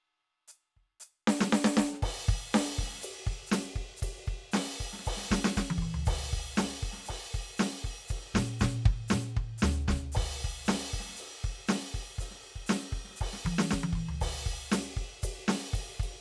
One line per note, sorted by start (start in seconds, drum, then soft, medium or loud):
0.48 hi-hat pedal medium
0.76 kick soft
1.00 hi-hat pedal loud
1.27 snare loud
1.40 snare loud
1.52 snare loud
1.64 snare loud
1.77 kick soft
1.77 snare loud
1.93 snare soft
2.02 kick medium
2.02 crash loud
2.28 kick loud
2.53 snare loud
2.53 hi-hat pedal loud
2.53 crash loud
2.78 kick medium
2.78 snare soft
2.78 crash soft
2.86 snare soft
2.89 snare soft
2.92 snare soft
2.94 snare soft
2.96 snare soft
2.98 snare soft
2.98 hi-hat pedal medium
3.02 snare soft
3.02 crash loud
3.26 kick medium
3.26 crash soft
3.46 hi-hat pedal medium
3.51 snare loud
3.51 crash loud
3.76 kick medium
3.76 crash soft
3.87 snare soft
3.90 snare soft
3.96 snare soft
3.96 hi-hat pedal medium
4.01 kick medium
4.01 snare soft
4.01 crash loud
4.27 kick medium
4.27 crash medium
4.52 snare loud
4.52 hi-hat pedal medium
4.52 crash loud
4.80 kick soft
4.80 crash medium
4.93 snare soft
4.99 snare soft
5.05 kick medium
5.05 hi-hat pedal medium
5.05 crash loud
5.17 snare soft
5.21 snare soft
5.25 snare soft
5.31 kick medium
5.31 snare loud
5.44 snare loud
5.56 kick medium
5.56 snare loud
5.56 hi-hat pedal medium
5.70 high tom loud
5.78 kick medium
5.82 mid tom medium
5.94 floor tom loud
6.05 kick loud
6.05 hi-hat pedal medium
6.05 crash loud
6.29 kick medium
6.29 crash soft
6.56 kick soft
6.56 snare loud
6.56 hi-hat pedal medium
6.56 crash loud
6.82 kick medium
6.82 crash soft
6.93 snare soft
6.98 snare soft
7.02 snare soft
7.02 hi-hat pedal medium
7.05 snare soft
7.05 crash loud
7.08 kick soft
7.08 snare soft
7.11 snare soft
7.34 kick medium
7.34 crash medium
7.57 snare loud
7.57 hi-hat pedal medium
7.57 crash medium
7.84 kick medium
7.84 crash soft
8.08 kick medium
8.08 hi-hat pedal medium
8.08 crash medium
8.34 kick soft
8.34 snare loud
8.34 mid tom loud
8.59 kick medium
8.59 snare loud
8.59 hi-hat pedal medium
8.59 mid tom loud
8.85 kick loud
8.85 mid tom soft
9.08 kick soft
9.08 snare loud
9.08 hi-hat pedal medium
9.08 mid tom loud
9.36 kick medium
9.36 mid tom medium
9.58 hi-hat pedal medium
9.62 kick soft
9.62 snare loud
9.62 floor tom loud
9.88 kick medium
9.88 snare loud
9.88 floor tom loud
10.12 hi-hat pedal medium
10.12 crash loud
10.17 kick medium
10.44 kick medium
10.65 kick soft
10.65 snare loud
10.65 hi-hat pedal medium
10.65 crash loud
10.93 kick medium
11.00 kick soft
11.00 snare soft
11.05 snare soft
11.08 snare soft
11.11 snare soft
11.14 snare soft
11.14 hi-hat pedal medium
11.16 snare soft
11.18 snare soft
11.18 crash medium
11.43 kick medium
11.43 crash medium
11.67 snare loud
11.67 hi-hat pedal medium
11.67 crash loud
11.94 kick medium
11.94 crash soft
12.18 kick medium
12.18 hi-hat pedal medium
12.18 crash medium
12.31 snare soft
12.42 kick soft
12.42 crash soft
12.56 kick soft
12.66 snare loud
12.66 hi-hat pedal loud
12.66 crash medium
12.92 kick medium
12.92 crash soft
13.04 snare soft
13.10 snare soft
13.14 snare soft
13.14 hi-hat pedal medium
13.21 kick medium
13.21 crash loud
13.33 snare soft
13.45 kick medium
13.45 high tom loud
13.58 snare loud
13.71 kick soft
13.71 snare loud
13.71 hi-hat pedal medium
13.83 high tom loud
13.93 kick medium
13.93 mid tom medium
14.08 floor tom medium
14.21 kick medium
14.21 hi-hat pedal medium
14.21 crash loud
14.44 kick medium
14.44 crash soft
14.71 snare loud
14.71 hi-hat pedal medium
14.71 crash loud
14.97 kick medium
14.97 crash soft
15.17 snare soft
15.22 kick medium
15.22 hi-hat pedal loud
15.22 crash loud
15.48 snare loud
15.48 crash loud
15.73 kick medium
15.73 crash medium
15.99 kick medium
15.99 crash medium